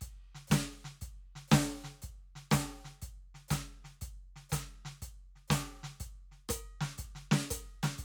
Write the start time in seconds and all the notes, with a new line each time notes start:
0.01 closed hi-hat, kick
0.35 snare
0.47 closed hi-hat, kick, snare, hi-hat pedal
0.84 snare
1.01 closed hi-hat, kick
1.35 snare
1.48 closed hi-hat, snare, hi-hat pedal
1.53 kick
1.84 snare
2.02 closed hi-hat, kick
2.35 snare
2.51 closed hi-hat, kick, snare, hi-hat pedal
2.85 snare
3.02 closed hi-hat, kick
3.34 snare
3.48 closed hi-hat, kick, snare, hi-hat pedal
3.84 snare
4.01 closed hi-hat, kick
4.36 snare
4.49 closed hi-hat, kick, snare, hi-hat pedal
4.85 snare
5.02 closed hi-hat, kick
5.36 snare
5.48 closed hi-hat, kick, snare, hi-hat pedal
5.83 snare
6.00 closed hi-hat, kick
6.31 snare
6.49 closed hi-hat, kick, cross-stick, hi-hat pedal
6.81 snare
6.98 closed hi-hat, kick
7.15 snare
7.31 snare
7.49 closed hi-hat, kick, hi-hat pedal
7.83 closed hi-hat, snare
7.98 closed hi-hat, kick